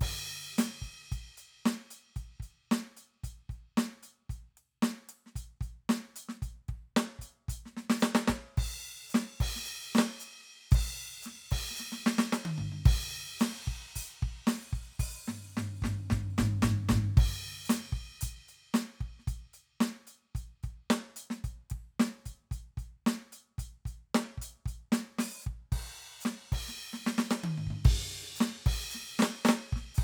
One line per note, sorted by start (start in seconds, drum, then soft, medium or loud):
0.01 kick medium
0.01 hi-hat pedal medium
0.01 crash loud
0.58 closed hi-hat loud
0.58 snare loud
0.82 closed hi-hat soft
0.82 kick soft
1.12 closed hi-hat medium
1.12 kick medium
1.38 closed hi-hat medium
1.66 snare loud
1.91 closed hi-hat medium
2.16 closed hi-hat soft
2.16 kick soft
2.40 closed hi-hat soft
2.40 kick soft
2.72 snare loud
2.97 closed hi-hat medium
3.24 closed hi-hat medium
3.24 kick soft
3.50 closed hi-hat soft
3.50 kick soft
3.78 snare loud
4.03 closed hi-hat medium
4.30 closed hi-hat soft
4.30 kick soft
4.57 closed hi-hat soft
4.83 snare loud
5.09 closed hi-hat medium
5.27 snare soft
5.36 closed hi-hat medium
5.36 kick soft
5.61 closed hi-hat soft
5.61 kick medium
5.90 snare loud
6.16 closed hi-hat medium
6.29 snare medium
6.43 closed hi-hat medium
6.43 kick medium
6.69 kick soft
6.69 closed hi-hat soft
6.97 snare loud
7.19 closed hi-hat medium
7.19 kick soft
7.49 closed hi-hat medium
7.49 kick medium
7.66 snare soft
7.77 snare medium
7.90 snare loud
8.00 snare loud
8.00 hi-hat pedal medium
8.15 snare loud
8.28 kick soft
8.28 snare loud
8.58 kick medium
8.58 crash loud
9.10 hi-hat pedal medium
9.15 snare loud
9.41 kick medium
9.41 crash loud
9.56 snare soft
9.66 hi-hat pedal medium
9.95 snare loud
9.99 snare loud
10.20 hi-hat pedal loud
10.71 kick loud
10.71 hi-hat pedal loud
10.71 crash loud
11.23 snare soft
11.23 hi-hat pedal medium
11.46 hi-hat pedal soft
11.51 kick medium
11.51 crash loud
11.71 snare soft
11.77 snare soft
11.77 hi-hat pedal loud
11.92 snare medium
12.07 snare loud
12.19 snare loud
12.33 snare loud
12.33 hi-hat pedal medium
12.46 high tom loud
12.58 kick soft
12.58 floor tom medium
12.72 floor tom soft
12.86 kick loud
12.86 crash loud
13.40 snare loud
13.40 hi-hat pedal medium
13.40 crash medium
13.68 kick medium
13.68 closed hi-hat soft
13.96 open hi-hat loud
13.96 kick soft
14.23 open hi-hat soft
14.23 kick medium
14.47 open hi-hat medium
14.47 snare loud
14.73 open hi-hat soft
14.73 kick medium
15.00 open hi-hat loud
15.00 kick medium
15.28 snare medium
15.28 floor tom medium
15.57 snare medium
15.57 floor tom medium
15.82 kick medium
15.82 snare medium
15.82 floor tom loud
16.10 kick medium
16.10 snare medium
16.10 floor tom loud
16.38 kick medium
16.38 snare loud
16.38 floor tom loud
16.63 kick medium
16.63 snare loud
16.63 floor tom loud
16.89 kick medium
16.89 snare loud
16.89 floor tom loud
17.18 kick loud
17.18 crash loud
17.65 hi-hat pedal medium
17.70 closed hi-hat loud
17.70 snare loud
17.93 kick medium
17.93 closed hi-hat soft
18.21 closed hi-hat loud
18.21 kick medium
18.49 closed hi-hat medium
18.74 closed hi-hat medium
18.74 snare loud
19.01 kick medium
19.01 closed hi-hat soft
19.19 snare soft
19.28 closed hi-hat medium
19.28 kick medium
19.54 closed hi-hat soft
19.81 snare loud
20.07 closed hi-hat medium
20.35 closed hi-hat medium
20.35 kick medium
20.63 closed hi-hat soft
20.63 kick soft
20.90 snare loud
21.17 closed hi-hat loud
21.31 snare medium
21.44 closed hi-hat soft
21.44 kick medium
21.70 kick soft
21.70 closed hi-hat medium
22.00 snare loud
22.26 closed hi-hat medium
22.26 kick soft
22.52 closed hi-hat medium
22.52 kick medium
22.78 closed hi-hat soft
22.78 kick soft
23.07 snare loud
23.33 closed hi-hat medium
23.59 closed hi-hat medium
23.59 kick soft
23.86 closed hi-hat soft
23.86 kick soft
24.15 snare loud
24.38 kick soft
24.42 closed hi-hat loud
24.66 closed hi-hat medium
24.66 kick medium
24.92 closed hi-hat medium
24.92 snare loud
25.19 open hi-hat loud
25.19 snare loud
25.42 hi-hat pedal medium
25.47 kick medium
25.72 kick medium
25.72 crash medium
26.21 hi-hat pedal medium
26.25 snare loud
26.52 kick medium
26.52 crash loud
26.69 snare soft
26.94 snare medium
27.07 snare loud
27.19 snare loud
27.30 snare loud
27.30 hi-hat pedal medium
27.44 high tom loud
27.58 floor tom medium
27.67 kick soft
27.67 floor tom medium
27.85 kick loud
27.85 ride loud
28.36 hi-hat pedal medium
28.41 snare loud
28.66 kick loud
28.66 crash loud
28.91 snare soft
28.91 hi-hat pedal medium
29.20 snare loud
29.23 snare loud
29.45 snare loud
29.45 hi-hat pedal medium
29.49 snare loud
29.73 kick medium
29.73 snare soft
29.95 kick medium
29.95 hi-hat pedal medium
29.95 crash medium